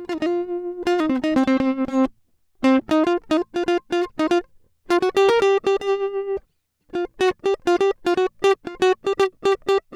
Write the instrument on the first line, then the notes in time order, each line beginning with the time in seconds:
acoustic guitar
0.10 E4
0.23 F4
0.88 F4
1.01 D#4
1.11 C4
1.25 D#4
1.37 C4
1.49 C4
1.62 C4
1.90 C4
2.65 C4
2.92 D#4
3.08 F4
3.32 E4
3.57 F4
3.69 F4
3.94 F4
4.20 D#4
4.32 F4
4.91 F4
5.04 F#4
5.17 G4
5.30 A#4
5.43 G4
5.68 G4
5.90 G4
6.96 F4
7.22 F#4
7.47 G4
7.68 F4
7.82 G4
8.07 F4
8.19 F#4
8.45 G4
8.68 F4
8.83 F#4
9.08 G4
9.20 G4
9.46 G4
9.70 G4